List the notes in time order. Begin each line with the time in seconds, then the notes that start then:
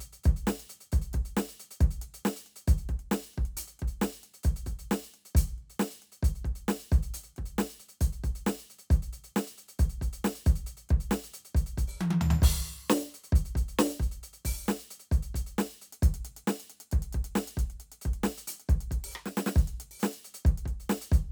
0.01 closed hi-hat
0.13 closed hi-hat
0.24 closed hi-hat, kick
0.37 closed hi-hat
0.48 snare
0.60 closed hi-hat
0.70 closed hi-hat
0.81 closed hi-hat
0.92 closed hi-hat, kick
1.02 closed hi-hat
1.14 kick, closed hi-hat
1.26 closed hi-hat
1.37 snare
1.49 closed hi-hat
1.60 closed hi-hat
1.71 closed hi-hat
1.81 kick, closed hi-hat
1.91 closed hi-hat
2.02 closed hi-hat
2.15 closed hi-hat
2.24 kick, snare
2.37 closed hi-hat
2.47 closed hi-hat
2.56 closed hi-hat
2.68 closed hi-hat, kick
2.78 closed hi-hat
2.89 kick, closed hi-hat
3.00 closed hi-hat
3.12 snare
3.23 closed hi-hat
3.34 closed hi-hat
3.38 kick
3.46 closed hi-hat
3.57 closed hi-hat
3.68 closed hi-hat
3.80 kick, closed hi-hat
3.88 closed hi-hat
4.02 snare
4.13 closed hi-hat
4.24 closed hi-hat
4.34 closed hi-hat
4.44 closed hi-hat, kick
4.57 closed hi-hat
4.67 kick
4.79 closed hi-hat
4.92 snare
5.04 closed hi-hat
5.14 closed hi-hat
5.26 closed hi-hat
5.35 closed hi-hat, kick
5.48 closed hi-hat
5.59 closed hi-hat
5.70 closed hi-hat
5.80 snare
5.91 closed hi-hat
6.03 closed hi-hat
6.13 closed hi-hat
6.23 closed hi-hat, kick
6.36 closed hi-hat
6.45 kick, closed hi-hat
6.56 closed hi-hat
6.69 snare
6.80 closed hi-hat
6.92 closed hi-hat, kick
7.03 closed hi-hat
7.15 closed hi-hat
7.24 closed hi-hat
7.37 kick, closed hi-hat
7.46 closed hi-hat
7.59 snare
7.70 closed hi-hat
7.80 closed hi-hat
7.89 closed hi-hat
8.01 closed hi-hat, kick
8.13 closed hi-hat
8.24 closed hi-hat, kick
8.36 closed hi-hat
8.47 snare
8.59 closed hi-hat
8.70 closed hi-hat
8.79 closed hi-hat
8.91 closed hi-hat, kick
9.03 closed hi-hat
9.13 closed hi-hat
9.25 closed hi-hat
9.37 snare
9.47 closed hi-hat
9.58 closed hi-hat
9.69 closed hi-hat
9.80 closed hi-hat, kick
9.90 closed hi-hat
10.02 closed hi-hat, kick
10.14 closed hi-hat
10.25 snare
10.36 closed hi-hat
10.47 closed hi-hat, kick
10.56 closed hi-hat
10.67 closed hi-hat
10.78 closed hi-hat
10.90 kick, closed hi-hat
11.01 closed hi-hat
11.12 snare
11.24 closed hi-hat
11.34 closed hi-hat
11.45 closed hi-hat
11.55 closed hi-hat, kick
11.67 closed hi-hat
11.78 closed hi-hat, kick
11.88 open hi-hat
12.01 hi-hat pedal, high tom
12.11 high tom
12.22 floor tom
12.31 floor tom
12.43 kick, crash
12.66 closed hi-hat
12.80 closed hi-hat
12.90 snare
13.03 closed hi-hat
13.15 closed hi-hat
13.24 closed hi-hat
13.33 closed hi-hat, kick
13.46 closed hi-hat
13.56 closed hi-hat, kick
13.69 closed hi-hat
13.79 snare
13.91 closed hi-hat
14.00 closed hi-hat, kick
14.12 closed hi-hat
14.24 closed hi-hat
14.34 closed hi-hat
14.45 open hi-hat, kick
14.57 open hi-hat
14.66 snare, hi-hat pedal
14.79 closed hi-hat
14.91 closed hi-hat
15.00 closed hi-hat
15.12 closed hi-hat, kick
15.23 closed hi-hat
15.35 closed hi-hat, kick
15.47 closed hi-hat
15.59 snare
15.72 closed hi-hat
15.82 closed hi-hat
15.93 closed hi-hat
16.03 kick, closed hi-hat
16.15 closed hi-hat
16.25 closed hi-hat
16.37 closed hi-hat
16.48 snare
16.60 closed hi-hat
16.70 closed hi-hat
16.81 closed hi-hat
16.92 kick, closed hi-hat
17.03 closed hi-hat
17.13 kick, closed hi-hat
17.25 closed hi-hat
17.36 snare
17.48 closed hi-hat
17.58 kick, closed hi-hat
17.71 closed hi-hat
17.80 closed hi-hat
17.92 closed hi-hat
18.02 closed hi-hat, kick
18.14 closed hi-hat
18.24 snare
18.38 closed hi-hat
18.48 closed hi-hat
18.60 closed hi-hat
18.69 kick, closed hi-hat
18.81 closed hi-hat
18.92 kick, closed hi-hat
19.05 open hi-hat
19.11 hi-hat pedal
19.16 cross-stick
19.26 snare
19.38 snare
19.47 snare
19.56 kick, closed hi-hat
19.68 closed hi-hat
19.81 closed hi-hat
19.92 open hi-hat
20.00 snare, hi-hat pedal
20.14 closed hi-hat
20.25 closed hi-hat
20.35 closed hi-hat
20.46 kick, closed hi-hat
20.58 closed hi-hat
20.66 kick
20.80 closed hi-hat
20.90 snare
21.02 closed hi-hat
21.12 closed hi-hat, kick